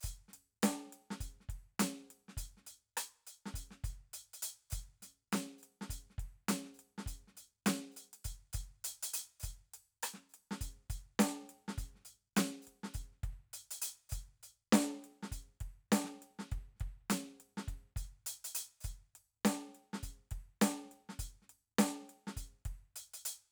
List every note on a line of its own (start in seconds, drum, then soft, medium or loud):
0.01 closed hi-hat medium
0.01 kick soft
0.01 hi-hat pedal soft
0.06 closed hi-hat medium
0.29 snare soft
0.34 closed hi-hat medium
0.63 closed hi-hat loud
0.63 snare medium
0.93 closed hi-hat soft
1.11 snare medium
1.21 closed hi-hat medium
1.21 kick soft
1.41 snare soft
1.49 kick soft
1.49 closed hi-hat soft
1.80 closed hi-hat loud
1.80 snare medium
2.11 closed hi-hat soft
2.29 snare soft
2.37 closed hi-hat medium
2.37 kick soft
2.57 snare soft
2.63 snare soft
2.65 closed hi-hat medium
2.65 snare soft
2.97 closed hi-hat loud
2.97 cross-stick medium
3.27 closed hi-hat medium
3.46 snare soft
3.54 closed hi-hat medium
3.54 kick soft
3.71 snare soft
3.84 closed hi-hat soft
3.84 kick soft
3.90 kick soft
3.93 kick soft
4.14 closed hi-hat medium
4.34 closed hi-hat medium
4.43 closed hi-hat loud
4.70 closed hi-hat medium
4.70 kick soft
4.70 hi-hat pedal medium
5.02 closed hi-hat soft
5.02 snare soft
5.33 closed hi-hat medium
5.33 snare medium
5.37 closed hi-hat medium
5.59 hi-hat pedal soft
5.63 closed hi-hat soft
5.81 snare soft
5.90 closed hi-hat medium
5.90 kick soft
6.10 snare soft
6.19 kick soft
6.19 closed hi-hat soft
6.49 closed hi-hat loud
6.49 snare medium
6.65 snare soft
6.74 hi-hat pedal soft
6.80 closed hi-hat soft
6.98 snare soft
7.06 closed hi-hat medium
7.06 kick soft
7.28 snare soft
7.35 closed hi-hat medium
7.35 snare soft
7.66 closed hi-hat loud
7.66 snare loud
7.90 snare soft
7.90 hi-hat pedal soft
7.97 closed hi-hat medium
8.13 open hi-hat medium
8.25 closed hi-hat medium
8.25 kick soft
8.53 closed hi-hat medium
8.53 kick soft
8.63 kick soft
8.85 closed hi-hat loud
9.03 closed hi-hat loud
9.14 closed hi-hat loud
9.40 closed hi-hat medium
9.40 kick soft
9.40 hi-hat pedal medium
9.74 closed hi-hat medium
10.03 closed hi-hat loud
10.03 cross-stick medium
10.14 snare soft
10.30 hi-hat pedal soft
10.34 closed hi-hat soft
10.51 snare medium
10.61 closed hi-hat medium
10.61 kick soft
10.90 closed hi-hat medium
10.90 kick soft
11.20 closed hi-hat loud
11.20 snare loud
11.50 closed hi-hat soft
11.68 snare medium
11.78 closed hi-hat medium
11.78 kick soft
11.84 kick soft
11.96 snare soft
12.00 snare soft
12.05 closed hi-hat soft
12.37 closed hi-hat loud
12.37 snare loud
12.62 hi-hat pedal soft
12.67 kick soft
12.67 closed hi-hat soft
12.84 snare soft
12.94 closed hi-hat medium
12.94 kick soft
13.12 snare soft
13.24 kick soft
13.24 closed hi-hat soft
13.33 kick soft
13.54 closed hi-hat medium
13.71 closed hi-hat medium
13.82 closed hi-hat loud
14.10 closed hi-hat medium
14.10 kick soft
14.10 hi-hat pedal medium
14.43 closed hi-hat soft
14.73 closed hi-hat loud
14.73 snare loud
15.04 closed hi-hat soft
15.23 snare soft
15.32 closed hi-hat medium
15.32 kick soft
15.61 kick soft
15.61 closed hi-hat soft
15.92 closed hi-hat loud
15.92 snare loud
16.05 snare soft
16.22 closed hi-hat soft
16.39 snare soft
16.52 kick soft
16.52 closed hi-hat soft
16.58 kick soft
16.61 kick soft
16.76 snare soft
16.76 closed hi-hat soft
16.81 kick soft
16.88 kick soft
17.01 kick soft
17.10 closed hi-hat loud
17.10 snare medium
17.40 closed hi-hat soft
17.58 snare medium
17.68 kick soft
17.68 closed hi-hat soft
17.74 kick soft
17.96 closed hi-hat medium
17.96 kick soft
18.05 kick soft
18.27 closed hi-hat loud
18.45 closed hi-hat medium
18.55 closed hi-hat loud
18.81 closed hi-hat medium
18.81 kick soft
18.81 hi-hat pedal soft
19.16 closed hi-hat soft
19.45 closed hi-hat medium
19.45 snare medium
19.75 closed hi-hat soft
19.94 snare medium
20.03 closed hi-hat medium
20.03 kick soft
20.31 kick soft
20.31 closed hi-hat soft
20.62 closed hi-hat loud
20.62 snare loud
20.92 closed hi-hat soft
21.09 snare soft
21.19 closed hi-hat medium
21.19 kick soft
21.42 snare soft
21.50 closed hi-hat soft
21.79 closed hi-hat loud
21.79 snare loud
22.10 closed hi-hat soft
22.27 snare soft
22.37 closed hi-hat medium
22.37 kick soft
22.66 kick soft
22.66 closed hi-hat soft
22.96 closed hi-hat medium
23.14 closed hi-hat medium
23.26 closed hi-hat loud